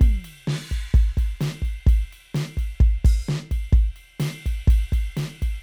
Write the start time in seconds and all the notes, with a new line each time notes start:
0.01 kick, ride
0.24 ride
0.47 snare, crash
0.71 kick, ride
0.94 kick, ride
1.17 kick, ride
1.41 snare, ride
1.62 kick, ride
1.87 kick, ride
2.12 ride
2.35 snare, ride
2.57 kick, ride
2.80 kick, ride
3.05 open hi-hat, kick, ride
3.28 snare, hi-hat pedal
3.51 kick, ride
3.73 kick, ride
3.96 ride
4.20 snare, ride
4.46 kick, ride
4.67 kick, ride
4.92 kick, ride
5.17 snare, ride
5.42 kick, ride